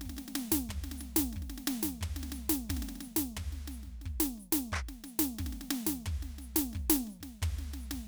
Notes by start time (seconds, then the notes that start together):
0.01 snare
0.05 kick
0.09 snare
0.17 snare
0.28 snare
0.35 snare, hi-hat pedal
0.51 kick, snare
0.69 kick, floor tom
0.84 snare
0.91 snare
0.98 snare, hi-hat pedal
1.16 kick, snare
1.33 kick, snare
1.42 snare
1.50 snare
1.58 snare
1.66 snare, hi-hat pedal
1.83 kick, snare
2.01 kick, floor tom
2.16 snare
2.23 snare
2.30 snare
2.32 snare, hi-hat pedal
2.48 kick, snare
2.69 kick, snare
2.77 snare
2.82 snare
2.89 snare
2.95 snare
3.00 snare, hi-hat pedal
3.16 kick, snare
3.37 kick, floor tom
3.52 snare
3.67 snare, hi-hat pedal
3.83 kick, snare
4.01 snare
4.05 kick
4.20 snare
4.37 snare, hi-hat pedal
4.52 kick, snare
4.72 kick, percussion
4.88 snare
5.04 snare, hi-hat pedal
5.19 kick, snare
5.38 kick, snare
5.46 snare
5.52 snare
5.61 snare
5.71 snare, hi-hat pedal
5.86 kick, snare
6.06 kick, floor tom
6.22 snare
6.38 snare, hi-hat pedal
6.55 kick, snare
6.73 kick, snare
6.90 snare
6.96 snare
7.07 snare, hi-hat pedal
7.20 kick, snare
7.42 kick, floor tom
7.58 snare
7.73 snare
7.80 hi-hat pedal
7.91 kick, snare